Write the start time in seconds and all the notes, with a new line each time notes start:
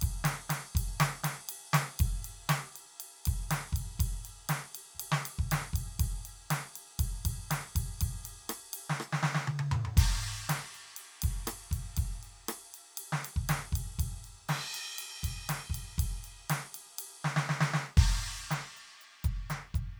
0.02 kick, ride
0.25 snare, ride
0.50 snare, ride
0.76 kick, ride
1.01 snare, ride
1.24 snare, ride
1.50 ride
1.74 snare, ride
2.00 kick, ride
2.25 ride
2.50 snare, ride
2.77 ride
3.01 ride
3.26 kick, ride
3.51 snare, ride
3.73 kick, ride
4.00 kick, ride
4.26 ride
4.50 snare, ride
4.76 ride
4.96 kick
5.00 ride
5.12 snare
5.26 ride
5.39 kick
5.52 snare, ride
5.74 kick, ride
6.00 kick, ride
6.05 kick
6.26 ride
6.51 snare, ride
6.76 ride
7.00 kick, ride
7.26 kick, ride
7.51 snare, ride
7.76 kick, ride
8.02 kick, ride
8.26 ride
8.50 cross-stick, ride
8.74 ride
8.90 snare
9.01 cross-stick
9.13 snare
9.24 snare
9.35 snare
9.48 high tom
9.60 high tom
9.72 mid tom
9.86 mid tom
9.98 kick, ride, crash
10.24 ride
10.50 snare, ride
10.75 ride
10.97 ride
11.23 kick, ride
11.48 cross-stick, ride
11.72 kick, ride
11.97 kick, ride
12.24 ride
12.49 cross-stick, ride
12.75 ride
12.98 ride
13.13 snare
13.25 ride
13.37 kick
13.50 snare, ride
13.73 kick, ride
14.00 kick, ride
14.25 ride
14.49 snare, ride
14.75 ride
14.99 ride
15.24 kick, ride
15.50 snare, ride
15.71 kick
15.75 ride
15.99 kick, ride
16.03 kick
16.25 ride
16.51 snare, ride
16.75 ride
16.99 ride
17.25 snare
17.37 snare
17.50 snare
17.61 snare
17.74 snare
17.98 kick, crash
18.26 open hi-hat
18.52 open hi-hat, snare
18.77 open hi-hat
19.02 closed hi-hat
19.25 kick, closed hi-hat
19.51 closed hi-hat, snare
19.75 closed hi-hat, kick